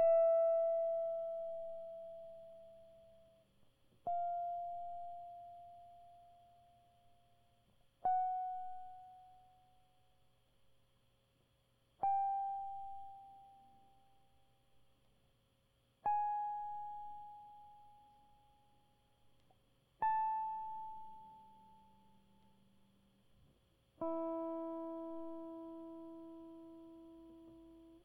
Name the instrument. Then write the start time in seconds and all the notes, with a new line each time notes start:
electric guitar
0.00 E5
4.07 F5
8.06 F#5
12.04 G5
16.07 G#5
20.03 A5
24.02 E4